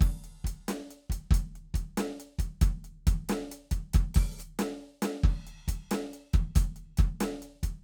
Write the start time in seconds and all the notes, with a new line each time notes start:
0.01 kick, crash
0.24 closed hi-hat
0.44 kick, closed hi-hat
0.68 snare, closed hi-hat
0.91 closed hi-hat
1.10 kick, closed hi-hat
1.31 kick, closed hi-hat
1.56 closed hi-hat
1.74 kick, closed hi-hat
1.98 snare, closed hi-hat
2.20 closed hi-hat
2.39 kick, closed hi-hat
2.62 kick, closed hi-hat
2.85 closed hi-hat
3.07 kick, closed hi-hat
3.29 snare, closed hi-hat
3.52 closed hi-hat
3.71 kick, closed hi-hat
3.94 kick, closed hi-hat
4.15 kick, open hi-hat
4.39 hi-hat pedal
4.59 snare, closed hi-hat
5.02 snare, closed hi-hat
5.24 kick, crash
5.47 closed hi-hat
5.68 kick, closed hi-hat
5.91 snare, closed hi-hat
6.14 closed hi-hat
6.34 kick, closed hi-hat
6.56 closed hi-hat, kick
6.76 closed hi-hat
6.98 kick, closed hi-hat
7.21 snare, closed hi-hat
7.42 closed hi-hat
7.63 kick, closed hi-hat